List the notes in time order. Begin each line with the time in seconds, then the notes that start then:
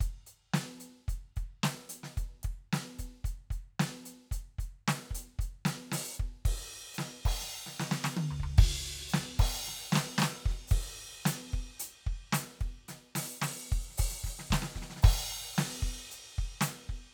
0.01 closed hi-hat, kick
0.27 closed hi-hat
0.54 snare
0.80 closed hi-hat
1.08 closed hi-hat, kick
1.36 closed hi-hat, kick
1.63 snare
1.89 closed hi-hat
2.03 snare
2.17 closed hi-hat, kick
2.43 kick, closed hi-hat
2.73 snare
2.99 closed hi-hat, kick
3.24 closed hi-hat, kick
3.50 closed hi-hat, kick
3.80 snare
4.05 closed hi-hat
4.31 closed hi-hat, kick
4.59 closed hi-hat, kick
4.88 snare
5.11 kick
5.15 closed hi-hat
5.39 closed hi-hat, kick
5.65 closed hi-hat, snare
5.92 open hi-hat, snare
6.15 hi-hat pedal
6.20 kick
6.45 kick, crash
6.94 hi-hat pedal
6.98 snare
7.25 kick, crash
7.42 snare
7.66 snare
7.80 snare
7.91 snare
8.03 snare, hi-hat pedal
8.17 high tom
8.31 floor tom
8.40 kick, floor tom
8.58 kick, ride
9.09 hi-hat pedal
9.14 snare
9.39 kick, crash
9.64 snare, hi-hat pedal
9.92 snare
9.95 snare
10.18 snare, hi-hat pedal
10.22 snare
10.46 kick, snare
10.68 kick, hi-hat pedal, crash
10.91 closed hi-hat
11.25 closed hi-hat, snare
11.52 kick, closed hi-hat
11.80 closed hi-hat
12.07 kick
12.33 closed hi-hat, snare
12.61 kick, closed hi-hat
12.88 closed hi-hat, snare
13.15 open hi-hat, snare
13.42 open hi-hat, snare
13.71 open hi-hat, kick
13.90 snare
13.98 open hi-hat, kick
14.11 snare
14.24 kick, snare
14.39 snare
14.50 kick, snare
14.62 snare
14.75 kick, snare
14.82 snare
14.90 snare
14.96 snare
15.03 kick, crash
15.54 hi-hat pedal
15.58 snare, crash
15.82 kick
16.11 closed hi-hat
16.33 closed hi-hat
16.38 kick
16.61 closed hi-hat, snare
16.67 snare
16.89 kick